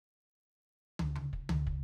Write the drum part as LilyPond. \new DrumStaff \drummode { \time 4/4 \tempo 4 = 122 r4 r4 \tuplet 3/2 { <tommh tomfh>8 <tomfh tommh>8 bd8 <tomfh tommh>8 bd8 r8 } | }